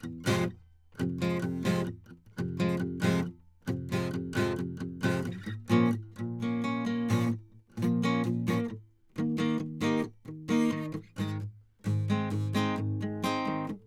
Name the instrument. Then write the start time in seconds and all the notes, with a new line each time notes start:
acoustic guitar
0.05 E2
0.27 E2 C3 F3 G#3
1.01 F2 C3
1.23 F3 G#3
1.41 F2
1.45 C3
1.67 C3 F3 G#3
2.40 F2 C3
2.61 F3 G#3
2.79 F2 C3
3.03 F2 C3 F3 G#3
3.69 F2 C3 F3
3.93 C3 F3 G#3
4.12 F2 F4
4.17 C3
4.34 F2 C3
4.39 F3 G#3
4.60 F2 C3
4.79 F2 C3
5.04 F2 C3 F3 G#3
5.27 F2
5.45 A2
5.71 A#2 F3 A#3 C#4
6.17 A#2
6.41 F3 A#3 C#4 F4
6.65 C#4 F4
6.86 A#3 C#4
7.10 A#2 F3 A#3 C#4
7.78 A#2
7.83 F3 A#3
8.04 A#3 C#4 F4
8.25 A#2 F3
8.48 F3 A#3 C#4
9.20 D#3 A#3
9.39 D#3 A#3 D#4
9.60 D#3 A#3
9.82 D#3 A#3 D#4 G4
10.27 D#3
10.50 D#3 A#3 D#4
10.72 D#3
10.94 D#3
11.18 G#2 D#3 G#3
11.85 G#2 D#3 G#3
12.10 C4
12.30 G#2 D#3 G#3
12.55 G#3 C4 D#4
12.78 G#2 D#3 G#3
13.02 G#2 G#3 C4
13.24 C4 D#4 G#4
13.47 D#3 G#3